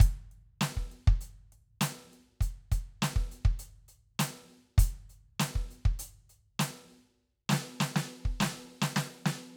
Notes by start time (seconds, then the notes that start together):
0.00 kick, closed hi-hat
0.31 closed hi-hat
0.61 closed hi-hat, snare
0.77 kick
0.92 closed hi-hat
1.07 kick
1.21 closed hi-hat
1.52 closed hi-hat
1.81 closed hi-hat, snare
2.13 closed hi-hat
2.41 closed hi-hat, kick
2.72 closed hi-hat, kick
3.02 closed hi-hat, snare
3.16 kick
3.31 closed hi-hat
3.45 kick
3.59 closed hi-hat
3.88 closed hi-hat
4.19 closed hi-hat, snare
4.78 closed hi-hat, kick
5.09 closed hi-hat
5.40 closed hi-hat, snare
5.55 kick
5.71 closed hi-hat
5.85 kick, crash
5.99 closed hi-hat
6.29 closed hi-hat
6.59 closed hi-hat, snare
7.49 snare
7.52 snare
7.80 snare
7.96 snare
8.25 kick
8.40 snare
8.43 snare
8.82 snare
8.96 snare
9.26 snare